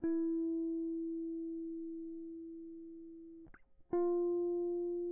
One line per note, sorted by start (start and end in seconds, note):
0.04 3.49 E4
3.93 5.12 F4